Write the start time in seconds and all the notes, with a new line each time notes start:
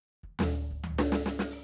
0.23 kick
0.39 snare, floor tom
0.71 kick
0.84 floor tom
0.99 snare
1.12 snare
1.26 snare
1.39 snare
1.51 open hi-hat